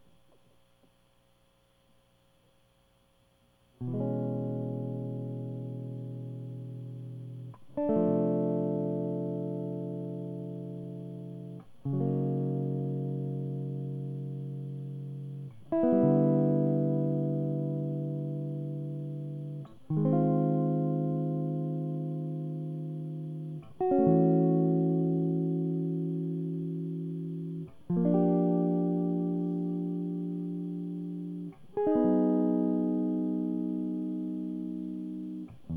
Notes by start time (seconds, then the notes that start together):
3.83 B2 E3
3.94 G#3
4.01 C#4
7.78 D4
7.90 A3
7.97 F3
8.04 C3
11.87 C#3
11.94 F#3
12.01 A#3 D#4
14.57 A#3
15.73 E4
15.84 B3
15.93 G3
16.04 D3
19.91 D#3
19.98 G#3
20.06 C4
20.13 F4
23.81 F#4
23.92 C#4
23.99 A3
24.08 E3
27.91 F3
27.97 A#3
28.06 D4
28.14 G4
31.77 G#4
31.87 D#4
31.96 B3